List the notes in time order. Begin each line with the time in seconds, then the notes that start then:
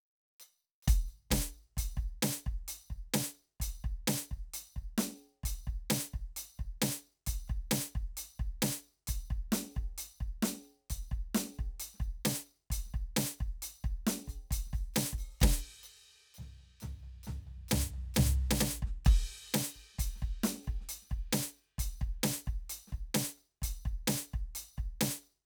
0.40 hi-hat pedal
0.82 hi-hat pedal
0.87 closed hi-hat, kick
1.08 closed hi-hat
1.31 closed hi-hat, kick, snare
1.77 closed hi-hat, kick
1.95 closed hi-hat, kick, snare
2.22 closed hi-hat, snare
2.46 kick
2.68 closed hi-hat
2.90 kick
3.14 closed hi-hat, snare
3.35 closed hi-hat
3.60 closed hi-hat, kick
3.84 kick
4.07 closed hi-hat, snare
4.31 kick
4.54 closed hi-hat
4.76 kick, closed hi-hat
4.98 closed hi-hat, snare
5.43 closed hi-hat, kick
5.67 kick, closed hi-hat
5.90 closed hi-hat, snare
6.13 kick
6.36 closed hi-hat
6.58 kick, closed hi-hat
6.82 closed hi-hat, snare
7.01 closed hi-hat
7.26 closed hi-hat, kick
7.48 kick, closed hi-hat
7.71 closed hi-hat, snare
7.95 kick
8.17 closed hi-hat
8.39 kick, closed hi-hat
8.62 closed hi-hat, snare
9.07 closed hi-hat, kick
9.30 kick, closed hi-hat
9.52 closed hi-hat, snare
9.75 kick, closed hi-hat
9.98 closed hi-hat
10.20 kick, closed hi-hat
10.42 closed hi-hat, snare
10.65 closed hi-hat
10.90 closed hi-hat, kick
11.01 snare
11.11 kick, closed hi-hat
11.35 closed hi-hat, snare
11.56 kick, closed hi-hat
11.80 closed hi-hat
11.94 snare
12.00 kick, closed hi-hat
12.25 closed hi-hat, snare
12.47 closed hi-hat
12.70 closed hi-hat, kick
12.86 snare
12.94 kick, closed hi-hat
13.16 closed hi-hat, snare
13.39 kick, closed hi-hat
13.62 closed hi-hat
13.84 kick, closed hi-hat
14.07 closed hi-hat, snare
14.27 closed hi-hat, kick
14.51 closed hi-hat, kick
14.66 snare
14.73 kick, percussion
14.94 snare, hi-hat pedal, percussion
15.13 kick
15.18 percussion
15.40 kick, snare, hi-hat pedal, crash
15.83 hi-hat pedal
16.34 hi-hat pedal
16.38 snare, floor tom
16.59 floor tom
16.80 snare, floor tom, hi-hat pedal
17.03 floor tom
17.23 snare, hi-hat pedal
17.27 floor tom
17.47 floor tom
17.68 snare, floor tom, hi-hat pedal
17.93 floor tom
18.14 snare, floor tom, hi-hat pedal
18.51 snare
18.59 snare, hi-hat pedal
18.82 kick, snare
19.05 kick, hi-hat pedal, crash
19.54 closed hi-hat, snare
19.75 kick, closed hi-hat
19.94 snare
19.99 closed hi-hat, kick
20.16 closed hi-hat, snare
20.22 kick
20.43 closed hi-hat, snare
20.64 kick, closed hi-hat
20.81 snare
20.89 closed hi-hat
21.02 snare
21.10 kick, closed hi-hat
21.33 closed hi-hat, snare
21.78 closed hi-hat, kick
22.00 kick, closed hi-hat
22.23 closed hi-hat, snare
22.46 kick, closed hi-hat
22.69 closed hi-hat
22.87 snare
22.92 kick, closed hi-hat
23.14 closed hi-hat, snare
23.37 closed hi-hat
23.62 closed hi-hat, kick
23.85 kick, closed hi-hat
24.07 closed hi-hat, snare
24.32 kick, closed hi-hat
24.55 closed hi-hat
24.77 kick, closed hi-hat
25.01 closed hi-hat, snare
25.23 closed hi-hat